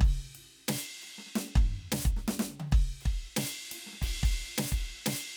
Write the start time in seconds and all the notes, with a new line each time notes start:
0.01 kick, crash
0.35 ride
0.68 snare, ride
1.02 ride
1.18 snare
1.27 snare
1.36 snare
1.56 kick, mid tom
1.92 snare
2.05 kick, mid tom
2.17 snare
2.28 snare
2.40 snare
2.50 high tom
2.60 high tom
2.72 kick, crash
3.01 ride
3.06 kick
3.37 snare, ride
3.72 ride
3.87 snare
3.93 snare
4.02 kick, ride
4.23 kick, ride
4.58 snare
4.72 kick, ride
5.06 snare, ride